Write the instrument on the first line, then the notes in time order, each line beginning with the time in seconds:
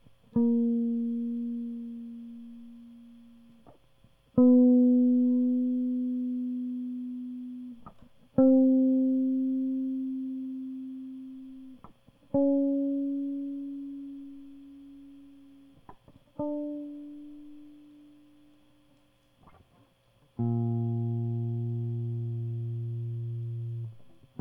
electric guitar
0.37 A#3
4.38 B3
8.39 C4
12.35 C#4
16.40 D4
20.40 A#2